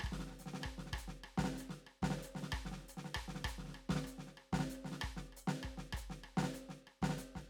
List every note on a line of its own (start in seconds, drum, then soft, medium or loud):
0.01 kick soft
0.01 cross-stick medium
0.07 cross-stick soft
0.13 snare soft
0.20 snare soft
0.27 snare soft
0.30 snare soft
0.40 snare soft
0.40 hi-hat pedal soft
0.47 snare soft
0.54 snare soft
0.61 cross-stick medium
0.61 snare soft
0.66 kick soft
0.79 snare soft
0.87 snare soft
0.93 kick soft
0.93 cross-stick medium
0.99 hi-hat pedal soft
1.09 snare soft
1.24 cross-stick medium
1.39 kick soft
1.39 snare medium
1.45 snare medium
1.54 snare soft
1.59 cross-stick soft
1.59 hi-hat pedal soft
1.70 snare soft
1.88 cross-stick soft
2.03 kick soft
2.03 snare medium
2.11 snare soft
2.18 snare soft
2.23 cross-stick soft
2.23 hi-hat pedal medium
2.31 snare soft
2.36 snare soft
2.43 snare soft
2.53 kick soft
2.53 cross-stick medium
2.66 snare soft
2.72 snare soft
2.77 snare soft
2.83 snare soft
2.89 cross-stick soft
2.89 hi-hat pedal soft
2.98 snare soft
3.05 snare soft
3.15 kick soft
3.15 cross-stick medium
3.29 snare soft
3.36 snare soft
3.41 snare soft
3.45 kick soft
3.45 cross-stick medium
3.45 hi-hat pedal soft
3.59 snare soft
3.64 snare soft
3.68 snare soft
3.75 cross-stick soft
3.90 kick soft
3.90 snare medium
3.96 snare medium
4.05 cross-stick soft
4.05 hi-hat pedal soft
4.14 snare soft
4.19 snare soft
4.28 snare soft
4.38 cross-stick soft
4.53 kick soft
4.53 snare medium
4.60 snare medium
4.68 snare soft
4.68 hi-hat pedal soft
4.76 cross-stick soft
4.82 snare soft
4.85 snare soft
5.02 kick soft
5.02 cross-stick medium
5.17 snare soft
5.33 cross-stick soft
5.37 hi-hat pedal medium
5.48 snare medium
5.64 kick soft
5.64 cross-stick medium
5.78 snare soft
5.93 kick soft
5.93 cross-stick medium
5.98 hi-hat pedal medium
6.11 snare soft
6.24 cross-stick soft
6.38 kick soft
6.38 snare medium
6.44 snare medium
6.55 cross-stick soft
6.55 hi-hat pedal soft
6.70 snare soft
6.88 cross-stick soft
7.03 kick soft
7.03 snare medium
7.10 snare medium
7.18 snare soft
7.18 hi-hat pedal medium
7.36 kick soft
7.36 snare soft